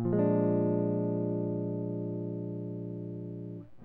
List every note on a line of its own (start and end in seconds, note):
0.01 3.63 A#2
0.06 3.68 F3
0.14 3.60 G#3
0.20 3.68 D4